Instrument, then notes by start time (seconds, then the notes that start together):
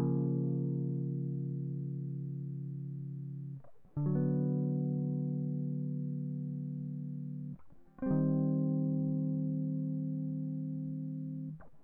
electric guitar
0.00 C#3
3.98 D3
4.07 F#3
4.16 B3
8.03 C4
8.07 G3
8.12 D#3